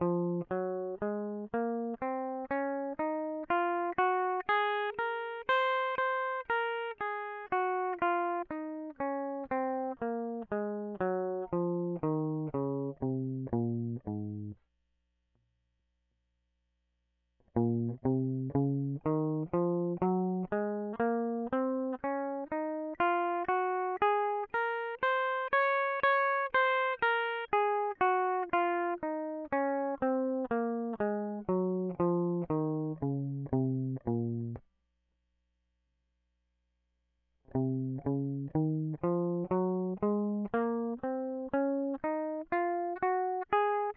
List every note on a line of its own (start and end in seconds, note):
0.02 0.46 F3
0.52 0.99 F#3
1.03 1.49 G#3
1.54 1.98 A#3
2.02 2.49 C4
2.51 2.97 C#4
3.00 3.48 D#4
3.51 3.96 F4
3.99 4.43 F#4
4.49 4.96 G#4
4.99 5.45 A#4
5.49 5.98 C5
5.99 6.44 C5
6.50 6.96 A#4
7.01 7.48 G#4
7.53 8.00 F#4
8.02 8.45 F4
8.51 8.95 D#4
9.01 9.49 C#4
9.52 9.95 C4
10.02 10.46 A#3
10.53 10.99 G#3
11.02 11.47 F#3
11.54 12.01 F3
12.04 12.52 D#3
12.56 12.94 C#3
13.04 13.51 C3
13.55 14.01 A#2
14.09 14.56 G#2
17.58 17.99 A#2
18.07 18.54 C3
18.58 19.01 C#3
19.07 19.48 D#3
19.55 20.01 F3
20.03 20.49 F#3
20.53 20.98 G#3
21.00 21.50 A#3
21.53 21.98 C4
22.04 22.49 C#4
22.52 22.97 D#4
23.01 23.48 F4
23.49 24.00 F#4
24.02 24.46 G#4
24.54 24.99 A#4
25.03 25.51 C5
25.53 26.03 C#5
26.04 26.51 C#5
26.55 26.97 C5
27.03 27.48 A#4
27.53 27.95 G#4
28.01 28.53 F#4
28.54 28.99 F4
29.03 29.49 D#4
29.53 29.98 C#4
30.03 30.49 C4
30.52 30.98 A#3
31.01 31.44 G#3
31.50 31.98 F#3
32.01 32.46 F3
32.51 32.97 D#3
33.04 33.51 C#3
33.55 34.00 C3
34.09 34.59 A#2
37.56 38.03 C3
38.08 38.51 C#3
38.56 38.99 D#3
39.05 39.49 F3
39.52 39.99 F#3
40.03 40.50 G#3
40.55 40.98 A#3
41.04 41.52 C4
41.54 41.98 C#4
42.04 42.46 D#4
42.53 43.00 F4
43.03 43.46 F#4
43.53 43.94 G#4